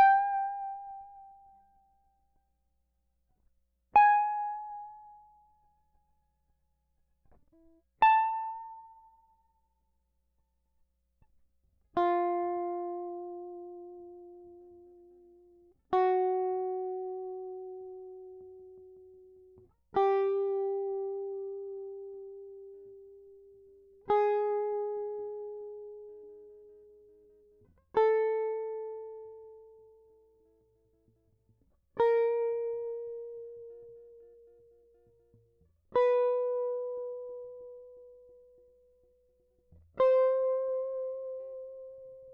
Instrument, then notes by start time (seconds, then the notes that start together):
electric guitar
0.00 G5
3.96 G#5
8.04 A5
11.98 F4
15.93 F#4
19.97 G4
24.11 G#4
27.97 A4
31.99 A#4
35.96 B4
40.00 C5